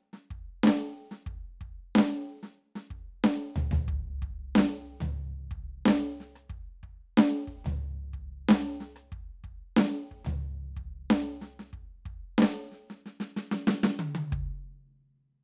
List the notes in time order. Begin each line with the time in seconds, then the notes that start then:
0.13 snare
0.31 kick
0.64 snare
0.67 snare
1.11 snare
1.26 kick
1.61 kick
1.95 snare
1.99 snare
2.43 snare
2.76 snare
2.90 kick
3.24 snare
3.56 floor tom
3.71 floor tom
3.88 kick
4.22 kick
4.55 snare
4.58 snare
5.01 floor tom, high tom
5.51 kick
5.86 snare
5.88 snare
6.20 snare
6.36 cross-stick
6.50 kick
6.83 kick
7.17 snare
7.47 kick
7.65 floor tom, high tom
8.13 kick
8.49 snare
8.51 snare
8.80 snare
8.96 cross-stick
9.12 kick
9.44 kick
9.77 snare
9.78 snare
10.11 kick
10.25 floor tom, high tom
10.77 kick
11.10 snare
11.42 snare
11.59 snare
11.73 kick
12.06 kick
12.38 snare
12.42 snare
12.72 snare, hi-hat pedal
12.90 snare
13.06 snare, hi-hat pedal
13.20 snare
13.37 snare, hi-hat pedal
13.51 snare
13.67 snare, hi-hat pedal
13.83 snare
13.98 hi-hat pedal, high tom
14.15 high tom
14.32 kick